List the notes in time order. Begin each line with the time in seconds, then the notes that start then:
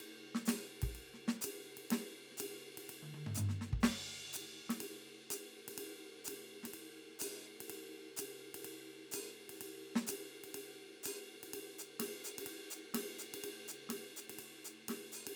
0.01 hi-hat pedal, ride
0.35 snare
0.46 snare, hi-hat pedal, ride
0.66 hi-hat pedal
0.83 kick, ride
0.96 ride
1.14 snare
1.28 snare
1.42 hi-hat pedal, ride
1.62 hi-hat pedal
1.78 ride
1.87 hi-hat pedal
1.91 snare, ride
2.32 snare
2.38 hi-hat pedal, ride
2.78 ride
2.85 hi-hat pedal
2.90 ride
3.03 high tom
3.15 high tom
3.27 floor tom
3.35 floor tom, hi-hat pedal
3.50 snare
3.62 snare
3.73 kick
3.81 snare, hi-hat pedal, ride
4.34 hi-hat pedal, ride
4.70 snare, ride
4.81 hi-hat pedal, ride
5.23 snare
5.31 hi-hat pedal, ride
5.69 snare, hi-hat pedal, ride
5.79 ride
6.25 hi-hat pedal, ride
6.64 snare, ride
6.74 ride
7.10 snare
7.20 hi-hat pedal, ride
7.61 ride
7.67 hi-hat pedal, ride
8.12 snare
8.17 hi-hat pedal, ride
8.55 ride
8.63 hi-hat pedal, ride
9.06 snare
9.12 hi-hat pedal, ride
9.50 ride
9.56 hi-hat pedal
9.62 ride
9.96 snare
10.08 hi-hat pedal, ride
10.44 ride
10.50 hi-hat pedal
10.55 ride
10.91 snare
11.04 hi-hat pedal, ride
11.44 ride
11.54 ride
11.79 hi-hat pedal
12.00 snare, ride
12.25 hi-hat pedal
12.39 ride
12.47 ride
12.71 hi-hat pedal
12.94 snare, hi-hat pedal, ride
13.19 hi-hat pedal
13.35 ride
13.42 hi-hat pedal, ride
13.69 hi-hat pedal
13.90 snare, ride
14.17 hi-hat pedal
14.30 ride
14.39 hi-hat pedal, ride
14.65 hi-hat pedal
14.87 snare, hi-hat pedal, ride
15.13 hi-hat pedal
15.27 ride